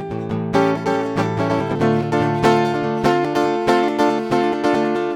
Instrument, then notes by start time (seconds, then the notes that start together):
acoustic guitar
0.00 E3 G4
0.13 A2 E3
0.32 A2 E3 G3
0.55 E3 G3 C#4 G4 A4
0.77 E3 G3 C#4 A4
0.88 G3 C#4 G4 A4
0.96 E3 C#4
1.04 G3
1.08 C#4
1.18 A2 E3 G3 D4 F#4 A4
1.40 E3 G3 C#4 E4 A4
1.53 G3 C#4 E4 A4
1.61 D3 G3 E4
1.73 D3 A3 C4 F4
1.81 A2 D3 A3 C4 F4 A4
1.99 A3
2.05 F4 A4
2.11 A3 A4
2.15 D4 F4
2.22 A2 D3 A3 D4
2.45 D3 A3 C4 F4 A4
2.59 F4
2.66 D4 F4 A4
2.77 A3 D4 F4 A4
2.85 D3 A3 D4
3.06 D3 A3 C4 F4 A4
3.26 D4 F4 A4
3.38 A3 D4 F4 A4
3.46 D3 A3 D4
3.69 D3 A3 C4 F4 A4
3.85 D4
3.90 F4 A4
4.01 A3 D4 F4 A4
4.11 D3 A3 D4 F4
4.22 F4
4.33 D3 A3 C4 F4 A4
4.45 D4
4.54 A3 D4 F4 A4
4.66 A3 D4 F4 A4
4.75 D3 A3 D4 F4 A4
4.87 D4 F4 A4
4.97 A3 D4 F4 A4